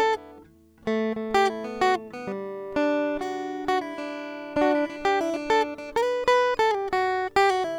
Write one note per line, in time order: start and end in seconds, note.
0.00 0.13 C#4
0.00 0.14 A4
0.15 0.35 E4
0.85 1.16 A3
0.85 1.07 B3
1.19 2.15 A3
1.36 1.48 G4
1.48 1.72 E4
1.66 2.00 B3
1.83 1.96 F#4
1.97 2.15 E4
2.15 2.38 B3
2.29 5.05 G3
2.78 3.97 D4
3.23 3.68 F#4
3.70 3.80 F#4
3.80 4.56 E4
4.00 4.58 D4
4.58 4.89 D4
4.63 4.73 F#4
4.73 5.01 E4
4.92 5.33 D4
5.06 5.22 G4
5.22 5.41 E4
5.35 5.77 D4
5.51 5.69 A4
5.80 5.96 D4
5.98 6.29 B4
6.29 6.57 B4
6.61 6.72 A4
6.73 6.92 G4
6.94 7.31 F#4
7.38 7.51 G4
7.51 7.65 F#4
7.66 7.79 E4